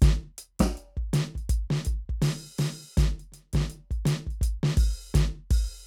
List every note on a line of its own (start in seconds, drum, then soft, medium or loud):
0.01 closed hi-hat loud
0.01 kick loud
0.01 snare loud
0.01 hi-hat pedal soft
0.38 closed hi-hat loud
0.60 closed hi-hat loud
0.60 kick medium
0.60 snare loud
0.66 snare soft
0.77 closed hi-hat medium
0.97 kick soft
1.14 closed hi-hat loud
1.14 snare loud
1.36 kick soft
1.36 closed hi-hat soft
1.50 closed hi-hat loud
1.50 kick medium
1.71 snare loud
1.85 closed hi-hat loud
1.85 kick medium
2.10 kick soft
2.22 open hi-hat loud
2.22 snare loud
2.59 open hi-hat loud
2.59 snare loud
2.97 open hi-hat loud
2.97 kick medium
2.97 snare loud
2.97 hi-hat pedal soft
3.20 closed hi-hat soft
3.32 closed hi-hat medium
3.32 snare soft
3.53 kick medium
3.53 snare loud
3.53 closed hi-hat medium
3.61 snare soft
3.70 closed hi-hat medium
3.91 kick medium
3.91 closed hi-hat soft
4.06 closed hi-hat loud
4.06 snare loud
4.27 kick soft
4.27 closed hi-hat soft
4.42 closed hi-hat loud
4.42 kick medium
4.64 snare loud
4.77 open hi-hat loud
4.77 kick medium
5.11 hi-hat pedal soft
5.15 closed hi-hat loud
5.15 kick medium
5.15 snare loud
5.51 open hi-hat loud
5.51 kick medium